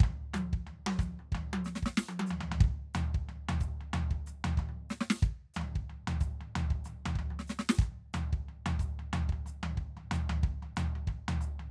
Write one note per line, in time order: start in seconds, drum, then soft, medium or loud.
0.01 kick loud
0.01 floor tom medium
0.34 floor tom medium
0.34 hi-hat pedal medium
0.34 high tom loud
0.53 kick medium
0.67 floor tom medium
0.87 high tom loud
0.99 kick medium
0.99 floor tom medium
0.99 hi-hat pedal medium
1.20 high tom soft
1.32 kick medium
1.32 floor tom medium
1.54 high tom loud
1.65 snare soft
1.65 hi-hat pedal medium
1.76 snare medium
1.83 kick medium
1.83 snare medium
1.98 snare loud
2.09 high tom medium
2.20 high tom loud
2.27 hi-hat pedal medium
2.31 floor tom medium
2.41 floor tom medium
2.52 floor tom loud
2.61 kick loud
2.94 floor tom loud
2.94 hi-hat pedal medium
3.15 kick medium
3.29 floor tom medium
3.49 floor tom loud
3.61 kick medium
3.61 floor tom soft
3.61 hi-hat pedal medium
3.81 floor tom soft
3.94 floor tom loud
4.11 kick medium
4.11 floor tom soft
4.27 floor tom soft
4.27 hi-hat pedal medium
4.45 floor tom loud
4.58 kick medium
4.58 floor tom medium
4.69 high tom soft
4.90 snare medium
4.90 hi-hat pedal medium
5.01 snare medium
5.11 snare loud
5.23 kick loud
5.54 floor tom loud
5.54 hi-hat pedal medium
5.62 floor tom medium
5.76 kick medium
5.90 floor tom soft
6.08 floor tom loud
6.21 kick medium
6.21 floor tom soft
6.21 hi-hat pedal medium
6.41 floor tom soft
6.56 floor tom loud
6.71 kick medium
6.71 floor tom soft
6.85 floor tom soft
6.85 hi-hat pedal medium
7.06 floor tom loud
7.16 kick medium
7.16 floor tom medium
7.31 high tom soft
7.40 kick soft
7.40 snare medium
7.48 snare medium
7.48 hi-hat pedal medium
7.59 snare medium
7.70 snare loud
7.79 kick loud
7.79 floor tom soft
8.14 floor tom loud
8.14 hi-hat pedal medium
8.33 kick medium
8.49 floor tom soft
8.66 floor tom loud
8.80 kick medium
8.80 floor tom soft
8.80 hi-hat pedal medium
9.00 floor tom soft
9.14 floor tom loud
9.29 kick medium
9.29 floor tom soft
9.46 floor tom soft
9.46 hi-hat pedal medium
9.63 floor tom loud
9.78 kick medium
9.78 floor tom soft
9.97 floor tom soft
10.12 floor tom loud
10.12 hi-hat pedal medium
10.30 floor tom loud
10.44 kick medium
10.44 floor tom soft
10.63 floor tom soft
10.77 floor tom loud
10.77 hi-hat pedal medium
10.96 floor tom soft
11.08 kick medium
11.08 floor tom soft
11.29 floor tom loud
11.41 floor tom soft
11.41 hi-hat pedal medium
11.60 floor tom soft